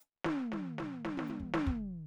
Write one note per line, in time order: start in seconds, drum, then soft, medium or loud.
0.00 hi-hat pedal medium
0.24 snare medium
0.24 floor tom medium
0.52 snare soft
0.52 floor tom medium
0.78 snare soft
0.78 floor tom medium
1.04 snare soft
1.04 floor tom medium
1.16 snare soft
1.16 floor tom medium
1.27 floor tom medium
1.27 hi-hat pedal soft
1.31 snare soft
1.40 kick soft
1.53 snare medium
1.53 floor tom medium
1.67 kick soft